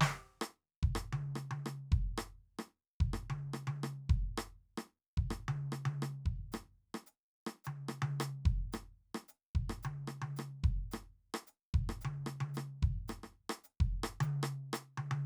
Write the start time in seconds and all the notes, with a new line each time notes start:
0.01 snare
0.41 cross-stick
0.83 kick
0.95 cross-stick
1.13 high tom
1.36 cross-stick
1.51 high tom
1.66 cross-stick
1.92 kick
2.18 cross-stick
2.59 cross-stick
3.00 kick
3.14 cross-stick
3.30 high tom
3.54 cross-stick
3.67 high tom
3.84 cross-stick
4.10 kick
4.38 cross-stick
4.78 cross-stick
5.17 kick
5.31 cross-stick
5.48 high tom
5.72 cross-stick
5.86 high tom
6.02 cross-stick
6.26 kick
6.52 cross-stick, hi-hat pedal
6.94 cross-stick
7.06 hi-hat pedal
7.47 cross-stick
7.64 hi-hat pedal, high tom
7.89 cross-stick
8.02 high tom
8.20 cross-stick, hi-hat pedal
8.46 kick
8.73 cross-stick, hi-hat pedal
9.15 cross-stick
9.28 hi-hat pedal
9.55 kick
9.70 cross-stick
9.83 hi-hat pedal, high tom
10.08 cross-stick
10.22 high tom
10.36 cross-stick, hi-hat pedal
10.64 kick
10.91 cross-stick, hi-hat pedal
11.34 cross-stick
11.47 hi-hat pedal
11.74 kick
11.89 cross-stick
12.01 hi-hat pedal, high tom
12.26 cross-stick
12.41 high tom
12.54 cross-stick, hi-hat pedal
12.83 kick
13.08 cross-stick, hi-hat pedal
13.24 cross-stick
13.50 cross-stick
13.64 hi-hat pedal
13.80 kick
14.04 cross-stick
14.21 hi-hat pedal, high tom
14.43 cross-stick
14.73 cross-stick, hi-hat pedal
14.98 high tom
15.11 high tom